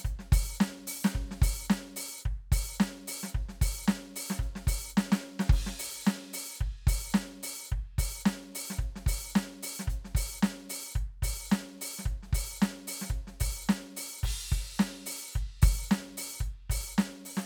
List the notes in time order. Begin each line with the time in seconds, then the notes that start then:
0.01 kick, hi-hat pedal
0.05 closed hi-hat
0.19 snare
0.32 open hi-hat, kick
0.57 snare, hi-hat pedal
0.87 open hi-hat
1.05 snare
1.11 hi-hat pedal
1.15 kick, closed hi-hat
1.31 snare
1.42 open hi-hat, kick
1.66 hi-hat pedal
1.70 snare
1.96 open hi-hat
2.21 hi-hat pedal
2.26 kick
2.52 open hi-hat, kick
2.77 snare, hi-hat pedal
3.08 open hi-hat
3.23 snare
3.29 hi-hat pedal
3.35 kick, closed hi-hat
3.49 snare
3.62 open hi-hat, kick
3.85 snare, hi-hat pedal
4.16 open hi-hat
4.30 snare
4.36 kick, hi-hat pedal
4.42 closed hi-hat
4.56 snare
4.67 open hi-hat, kick
4.91 hi-hat pedal
4.97 snare
5.12 snare
5.40 snare, hi-hat pedal
5.50 kick, crash
5.67 snare
5.79 open hi-hat
6.06 snare, hi-hat pedal
6.34 open hi-hat
6.58 kick, hi-hat pedal
6.87 open hi-hat, kick
7.12 snare, hi-hat pedal
7.43 open hi-hat
7.68 kick, hi-hat pedal
7.99 open hi-hat, kick
8.22 hi-hat pedal
8.26 snare
8.55 open hi-hat
8.70 snare, hi-hat pedal
8.79 kick, closed hi-hat
8.96 snare
9.07 open hi-hat, kick
9.31 hi-hat pedal
9.36 snare
9.63 open hi-hat
9.80 snare, hi-hat pedal
9.88 closed hi-hat, kick
10.05 snare
10.15 open hi-hat, kick
10.38 hi-hat pedal
10.43 snare
10.70 open hi-hat
10.92 kick, hi-hat pedal
11.23 open hi-hat, kick
11.49 snare, hi-hat pedal
11.81 open hi-hat
11.99 snare, hi-hat pedal
12.06 kick
12.23 snare
12.33 open hi-hat, kick
12.57 hi-hat pedal
12.62 snare
12.88 open hi-hat
13.02 snare
13.07 kick, hi-hat pedal
13.27 snare
13.40 open hi-hat, kick
13.64 hi-hat pedal
13.69 snare
13.97 open hi-hat
14.19 hi-hat pedal
14.23 kick, crash
14.52 open hi-hat, kick
14.76 snare, hi-hat pedal
15.06 open hi-hat
15.30 hi-hat pedal, open hi-hat
15.36 kick
15.62 open hi-hat, kick
15.86 hi-hat pedal
15.91 snare
16.17 open hi-hat
16.39 kick, hi-hat pedal
16.70 open hi-hat, kick
16.92 hi-hat pedal
16.98 snare
17.25 open hi-hat
17.37 snare
17.42 hi-hat pedal